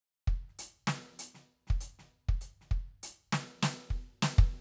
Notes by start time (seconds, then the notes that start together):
0.28 kick, closed hi-hat
0.49 snare
0.59 closed hi-hat
0.87 snare
1.08 snare
1.19 closed hi-hat
1.35 snare
1.67 kick, snare
1.81 closed hi-hat
1.99 snare
2.11 closed hi-hat
2.29 kick, snare
2.41 closed hi-hat
2.61 snare
2.71 kick, closed hi-hat
3.03 closed hi-hat
3.33 closed hi-hat, snare
3.63 closed hi-hat, snare
3.90 kick, closed hi-hat
4.22 closed hi-hat, snare
4.38 kick